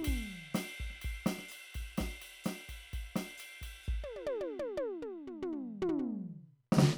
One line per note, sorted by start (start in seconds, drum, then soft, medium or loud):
0.01 floor tom soft
0.01 hi-hat pedal soft
0.05 kick soft
0.05 ride medium
0.14 kick soft
0.31 ride soft
0.55 snare medium
0.55 hi-hat pedal medium
0.55 ride medium
0.80 kick soft
0.86 kick soft
0.91 snare soft
1.01 kick soft
1.01 hi-hat pedal soft
1.01 ride medium
1.27 snare medium
1.27 ride medium
1.39 snare soft
1.49 hi-hat pedal medium
1.49 ride medium
1.75 kick soft
1.75 ride medium
1.81 kick soft
1.98 kick soft
1.98 snare medium
1.98 ride medium
2.06 kick soft
2.22 ride medium
2.45 snare medium
2.45 hi-hat pedal medium
2.45 ride medium
2.69 kick soft
2.69 ride soft
2.94 kick soft
2.94 ride soft
3.16 snare medium
3.16 ride medium
3.38 hi-hat pedal medium
3.38 ride medium
3.62 kick soft
3.62 ride medium
3.84 hi-hat pedal soft
3.89 kick soft
3.94 kick soft
4.04 high tom medium
4.16 high tom medium
4.27 high tom loud
4.41 high tom medium
4.60 high tom medium
4.78 high tom loud
5.02 mid tom medium
5.27 floor tom medium
5.43 floor tom medium
5.53 floor tom soft
5.82 floor tom loud
5.89 floor tom medium
5.99 floor tom medium
6.73 snare medium
6.77 snare medium
6.79 snare medium
6.83 snare loud